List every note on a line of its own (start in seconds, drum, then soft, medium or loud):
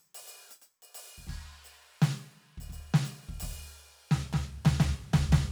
0.15 percussion medium
0.28 percussion medium
0.50 percussion soft
0.51 percussion medium
0.62 percussion soft
0.83 percussion medium
0.95 percussion medium
1.18 kick soft
1.27 kick soft
1.27 snare soft
1.27 crash medium
1.36 snare soft
1.42 snare soft
1.65 percussion medium
2.02 snare loud
2.02 percussion medium
2.51 snare soft
2.58 kick soft
2.58 percussion medium
2.70 kick soft
2.70 percussion medium
2.94 snare loud
3.05 percussion medium
3.24 snare soft
3.29 kick soft
3.29 snare soft
3.40 kick medium
3.40 percussion loud
4.12 snare loud
4.12 floor tom medium
4.33 snare loud
4.33 floor tom medium
4.66 snare loud
4.66 floor tom loud
4.80 snare loud
4.80 floor tom loud
5.14 kick soft
5.14 snare loud
5.14 floor tom loud
5.31 kick medium
5.31 snare loud
5.31 floor tom loud